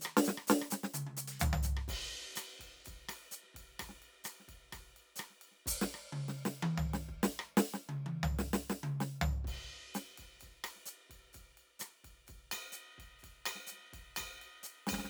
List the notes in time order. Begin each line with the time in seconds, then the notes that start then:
0.01 cross-stick, hi-hat pedal
0.17 snare
0.24 hi-hat pedal
0.28 snare
0.37 cross-stick
0.47 snare, hi-hat pedal
0.61 cross-stick
0.70 snare, hi-hat pedal
0.83 snare
0.93 hi-hat pedal, mid tom
1.06 mid tom
1.17 hi-hat pedal, mid tom
1.27 closed hi-hat
1.39 hi-hat pedal, floor tom
1.53 floor tom
1.63 floor tom, hi-hat pedal
1.77 cross-stick
1.88 kick, hi-hat pedal, ride
2.35 cross-stick, hi-hat pedal, ride
2.59 kick, ride
2.64 kick
2.84 kick, hi-hat pedal, ride
3.09 cross-stick, ride
3.31 hi-hat pedal, ride
3.43 snare
3.54 kick, ride
3.59 kick
3.79 kick, cross-stick, hi-hat pedal, ride
3.86 kick, snare
4.02 ride
4.24 cross-stick, hi-hat pedal, ride
4.40 snare
4.48 kick, ride
4.53 kick
4.72 kick, cross-stick, hi-hat pedal, ride
4.78 kick
4.96 ride
5.16 cross-stick, hi-hat pedal, ride
5.30 snare
5.41 ride
5.51 snare
5.66 kick, hi-hat pedal
5.72 kick
5.81 snare
5.94 cross-stick
6.12 mid tom
6.28 snare
6.45 snare
6.62 high tom
6.77 floor tom
6.93 snare
7.08 kick
7.14 kick
7.23 snare
7.39 cross-stick
7.57 snare
7.74 snare
7.89 mid tom
8.06 open hi-hat, high tom
8.23 floor tom
8.39 snare
8.53 snare
8.70 snare
8.83 mid tom
9.00 snare
9.21 floor tom
9.44 kick, ride
9.53 cross-stick
9.94 snare, hi-hat pedal, ride
10.17 kick, snare, ride
10.23 kick
10.35 snare
10.39 kick, hi-hat pedal, ride
10.47 kick
10.64 cross-stick, ride
10.75 snare
10.85 snare, hi-hat pedal, ride
11.09 kick, ride
11.14 kick
11.33 kick, hi-hat pedal, ride
11.39 kick
11.57 ride
11.79 cross-stick, hi-hat pedal, ride
12.04 kick, ride
12.26 kick, hi-hat pedal, ride
12.51 cross-stick, ride bell
12.72 hi-hat pedal, ride
12.98 kick, ride
13.03 kick
13.19 hi-hat pedal
13.23 kick, ride
13.28 kick
13.45 cross-stick, ride bell
13.55 snare
13.67 hi-hat pedal, ride
13.72 snare
13.78 snare
13.81 snare
13.85 snare
13.93 kick, ride
13.98 kick
14.15 cross-stick, hi-hat pedal, ride bell
14.19 kick
14.24 kick
14.41 ride
14.63 hi-hat pedal, ride
14.87 kick, snare, ride bell
14.93 kick, snare
14.98 snare
15.04 snare